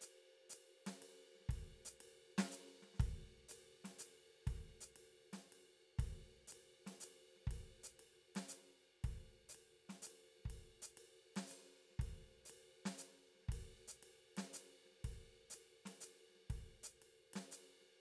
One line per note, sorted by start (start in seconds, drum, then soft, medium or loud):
0.01 hi-hat pedal medium
0.01 ride soft
0.50 hi-hat pedal medium
0.50 ride soft
0.86 snare soft
0.86 ride medium
1.02 ride medium
1.35 snare soft
1.38 snare soft
1.40 snare soft
1.49 kick soft
1.49 ride soft
1.85 hi-hat pedal medium
2.01 ride medium
2.38 snare medium
2.38 ride medium
2.51 hi-hat pedal medium
2.51 ride soft
2.82 snare soft
2.87 snare soft
2.91 snare soft
2.94 snare soft
3.00 kick medium
3.00 ride medium
3.49 hi-hat pedal medium
3.49 ride medium
3.84 snare soft
3.84 ride soft
3.99 hi-hat pedal medium
3.99 ride soft
4.47 kick soft
4.47 ride soft
4.81 hi-hat pedal medium
4.96 ride soft
5.33 snare soft
5.33 ride soft
5.52 ride soft
5.99 kick soft
5.99 ride medium
6.48 hi-hat pedal medium
6.52 ride medium
6.86 snare soft
6.86 ride soft
7.00 hi-hat pedal medium
7.00 ride soft
7.36 snare soft
7.41 snare soft
7.47 kick soft
7.47 ride medium
7.84 hi-hat pedal medium
7.99 ride soft
8.35 snare medium
8.35 ride soft
8.49 hi-hat pedal medium
8.53 ride soft
9.04 kick soft
9.04 ride soft
9.49 hi-hat pedal medium
9.55 ride soft
9.89 snare soft
9.89 ride soft
10.02 hi-hat pedal medium
10.07 ride soft
10.39 snare soft
10.45 kick soft
10.50 ride soft
10.82 hi-hat pedal medium
10.97 ride medium
11.36 snare medium
11.36 ride soft
11.47 hi-hat pedal medium
11.51 ride soft
11.90 snare soft
11.99 kick soft
11.99 ride soft
12.45 hi-hat pedal medium
12.50 ride medium
12.85 snare medium
12.85 ride soft
12.98 hi-hat pedal medium
13.02 ride soft
13.35 snare soft
13.38 snare soft
13.41 snare soft
13.48 kick soft
13.48 snare soft
13.48 ride medium
13.88 hi-hat pedal medium
14.03 ride soft
14.37 snare medium
14.37 ride medium
14.53 hi-hat pedal medium
14.53 ride soft
14.85 snare soft
14.91 snare soft
15.04 kick soft
15.04 ride medium
15.50 hi-hat pedal medium
15.54 ride soft
15.86 snare soft
15.86 ride medium
16.01 hi-hat pedal medium
16.01 ride soft
16.29 snare soft
16.35 snare soft
16.41 snare soft
16.43 snare soft
16.50 kick soft
16.50 ride soft
16.83 hi-hat pedal medium
17.02 ride soft
17.34 snare soft
17.34 ride medium
17.51 hi-hat pedal medium
17.51 ride soft
17.81 snare soft
17.84 snare soft
17.87 snare soft
17.91 snare soft